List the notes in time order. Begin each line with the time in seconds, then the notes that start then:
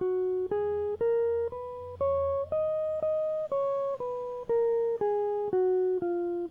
0.02 F#4
0.52 G#4
1.02 A#4
1.51 B4
2.02 C#5
2.53 D#5
3.03 D#5
3.52 C#5
4.01 B4
4.50 A#4
5.02 G#4
5.54 F#4
6.03 F4